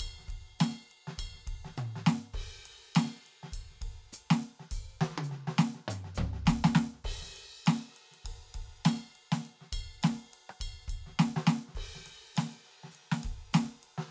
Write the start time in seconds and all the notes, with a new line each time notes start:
0.01 kick, ride bell
0.07 kick
0.10 kick
0.20 snare
0.27 kick, snare
0.31 snare, ride
0.35 kick
0.60 snare, hi-hat pedal, ride bell
0.70 snare
0.93 ride
1.08 snare
1.19 kick, snare, ride bell
1.25 kick
1.34 snare
1.48 kick, ride
1.55 kick
1.66 snare
1.78 hi-hat pedal, mid tom
1.97 snare
2.08 snare
2.35 kick, crash
2.41 kick
2.45 kick
2.59 snare
2.62 snare
2.67 ride
2.96 snare, hi-hat pedal, ride bell
3.06 snare
3.28 ride
3.44 snare
3.53 kick, ride bell
3.62 kick
3.71 snare
3.82 kick, ride
3.89 kick
4.14 hi-hat pedal, ride
4.32 snare
4.44 ride
4.61 snare
4.72 kick, hi-hat pedal, ride bell
4.89 snare
4.95 kick
5.02 snare
5.19 high tom
5.25 hi-hat pedal
5.32 snare
5.49 snare
5.59 snare, hi-hat pedal
5.76 snare
5.89 hi-hat pedal, mid tom
6.06 snare
6.16 kick, hi-hat pedal, floor tom
6.34 snare
6.47 kick, snare, hi-hat pedal
6.65 snare
6.76 snare
6.95 snare
7.06 kick, crash
7.16 kick
7.22 snare
7.29 snare
7.34 snare, ride
7.67 snare, hi-hat pedal, ride
7.78 snare
7.98 ride
8.12 snare, ride
8.19 snare
8.25 kick, hi-hat pedal, ride
8.56 kick, ride
8.64 kick
8.86 snare, hi-hat pedal, ride bell
8.94 snare
9.17 ride
9.33 snare
9.40 hi-hat pedal
9.47 ride
9.62 snare
9.74 kick, snare, ride bell
9.80 kick
9.85 kick
10.03 snare, hi-hat pedal, ride
10.11 cross-stick
10.35 ride
10.50 cross-stick
10.61 kick, hi-hat pedal, ride bell
10.68 kick
10.71 kick
10.89 kick, ride bell
10.95 kick
11.08 snare
11.20 snare, hi-hat pedal
11.37 snare
11.47 snare, hi-hat pedal
11.69 snare
11.74 kick, hi-hat pedal, crash
11.82 kick
11.85 kick
11.96 snare
12.07 snare, ride
12.37 snare, hi-hat pedal, ride
12.64 hi-hat pedal, ride
12.85 snare
12.93 hi-hat pedal, ride
13.13 snare
13.25 kick, ride
13.32 kick
13.36 kick
13.54 snare, hi-hat pedal, ride
13.64 snare
13.84 ride
13.99 snare